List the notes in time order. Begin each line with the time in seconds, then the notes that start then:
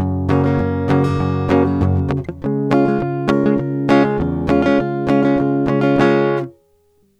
0.00 F#2 C#3
0.30 C#3 F#3 A#3 C#4
0.46 F#3 A#3 C#4
0.61 F#2 C#3
0.89 F#2 C#3 F#3 A#3
0.94 C#4
1.05 F#3 A#3 C#4
1.09 F#2 C#3
1.22 F#2 C#3
1.51 C#3 F#3 A#3 C#4
1.64 F#3 A#3 C#4
1.83 E2 C#3 F#3
2.10 C#3 F#3 A#3
2.44 C#3
2.48 G#3
2.73 G#3 C#4 F4
2.87 G#3 C#4
3.00 C#3
3.29 G#3 C#4 F4 A#4
3.48 G#3
3.60 C#3 G#3
3.90 G#3 C#4 F4
4.04 C#4 F4
4.20 E2 C#3 G#3
4.51 G#3 C#4 F4
4.64 C#4 F4
4.69 G#3
4.80 C#3 G#3
5.08 C#3 G#3 C#4
5.12 F4
5.25 G#3 C#4 F4
5.38 C#3
5.43 G#3
5.67 C#3 G#3 C#4
5.83 C#4 F4
5.98 C#3 G#3
6.03 C#4 F4